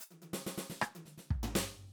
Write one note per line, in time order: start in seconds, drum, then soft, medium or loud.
0.00 hi-hat pedal loud
0.10 high tom soft
0.22 high tom medium
0.33 snare medium
0.46 snare medium
0.58 snare medium
0.70 snare medium
0.81 cross-stick medium
0.95 high tom medium
1.05 snare soft
1.18 snare soft
1.30 kick medium
1.43 floor tom loud
1.55 snare loud